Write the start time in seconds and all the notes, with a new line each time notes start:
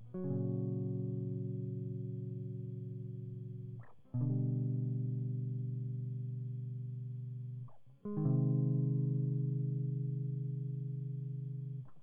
0.15 F#3
0.25 C#3
0.31 A#2
4.15 B2
4.22 D3
4.30 G3
8.06 G#3
8.18 D#3
8.26 C3